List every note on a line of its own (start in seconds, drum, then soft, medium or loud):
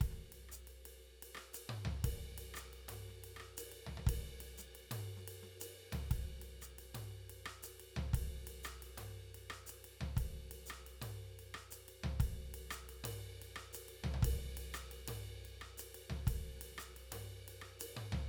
0.01 kick medium
0.01 ride medium
0.11 snare soft
0.32 ride medium
0.49 cross-stick soft
0.49 hi-hat pedal medium
0.68 ride soft
0.86 ride medium
1.02 hi-hat pedal soft
1.23 ride medium
1.35 cross-stick medium
1.37 cross-stick medium
1.54 hi-hat pedal medium
1.54 ride medium
1.69 mid tom medium
1.85 floor tom medium
2.04 kick medium
2.04 ride loud
2.38 ride medium
2.54 cross-stick medium
2.54 hi-hat pedal medium
2.57 cross-stick medium
2.73 ride soft
2.89 mid tom medium
2.89 ride medium
3.09 snare soft
3.24 ride medium
3.37 cross-stick soft
3.40 cross-stick soft
3.57 hi-hat pedal medium
3.57 ride loud
3.72 ride medium
3.87 floor tom medium
3.98 floor tom medium
4.07 kick medium
4.07 ride loud
4.27 snare soft
4.41 ride medium
4.58 snare soft
4.58 hi-hat pedal medium
4.75 ride medium
4.91 mid tom loud
4.91 ride medium
5.17 snare soft
5.28 ride medium
5.43 snare soft
5.60 hi-hat pedal medium
5.60 ride medium
5.93 floor tom medium
5.93 ride medium
6.11 kick medium
6.11 ride medium
6.38 snare soft
6.42 ride medium
6.62 cross-stick soft
6.62 snare soft
6.62 hi-hat pedal medium
6.79 ride medium
6.95 mid tom medium
6.95 ride medium
7.30 ride medium
7.46 cross-stick medium
7.63 hi-hat pedal medium
7.63 ride medium
7.80 ride medium
7.97 floor tom medium
8.14 kick medium
8.14 ride medium
8.47 ride medium
8.64 cross-stick medium
8.64 hi-hat pedal medium
8.83 ride medium
8.98 mid tom medium
8.98 ride medium
9.35 ride medium
9.50 cross-stick medium
9.67 hi-hat pedal medium
9.67 ride medium
9.85 ride medium
10.01 floor tom medium
10.17 kick medium
10.17 ride medium
10.51 ride medium
10.66 hi-hat pedal medium
10.70 cross-stick medium
10.87 ride medium
11.02 mid tom medium
11.02 ride medium
11.39 ride soft
11.54 cross-stick medium
11.71 hi-hat pedal medium
11.71 ride medium
11.89 ride medium
12.04 floor tom medium
12.20 kick medium
12.20 ride medium
12.54 ride medium
12.71 cross-stick medium
12.71 hi-hat pedal medium
12.89 ride medium
13.04 mid tom medium
13.04 ride loud
13.42 ride medium
13.56 cross-stick medium
13.73 hi-hat pedal medium
13.73 ride medium
13.89 ride medium
14.04 floor tom loud
14.14 floor tom medium
14.23 kick medium
14.23 ride loud
14.57 ride medium
14.74 cross-stick medium
14.74 hi-hat pedal medium
14.92 ride medium
15.08 mid tom medium
15.08 ride loud
15.45 ride soft
15.62 cross-stick medium
15.78 hi-hat pedal medium
15.78 ride medium
15.95 ride medium
16.10 floor tom medium
16.27 kick medium
16.27 ride medium
16.61 ride medium
16.78 cross-stick medium
16.78 hi-hat pedal medium
16.97 ride medium
17.12 mid tom medium
17.12 ride medium
17.48 ride medium
17.62 cross-stick medium
17.80 hi-hat pedal medium
17.80 ride loud
17.97 mid tom medium
18.13 floor tom loud